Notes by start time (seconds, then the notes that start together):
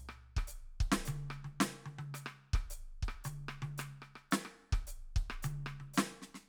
0.09 cross-stick
0.37 kick, cross-stick
0.48 hi-hat pedal
0.81 kick
0.92 snare
1.06 hi-hat pedal, high tom
1.31 cross-stick
1.45 high tom
1.61 snare, hi-hat pedal
1.86 high tom
1.99 high tom
2.15 cross-stick, hi-hat pedal
2.27 cross-stick
2.54 kick, cross-stick
2.71 hi-hat pedal
3.03 kick
3.09 cross-stick
3.25 hi-hat pedal, high tom
3.49 cross-stick
3.63 high tom
3.78 cross-stick, hi-hat pedal
4.03 cross-stick
4.16 cross-stick
4.32 snare, hi-hat pedal
4.46 cross-stick
4.73 kick, cross-stick
4.88 hi-hat pedal
5.17 kick
5.31 cross-stick
5.43 hi-hat pedal, high tom
5.67 cross-stick
5.81 high tom
5.94 snare, hi-hat pedal
6.22 snare
6.35 snare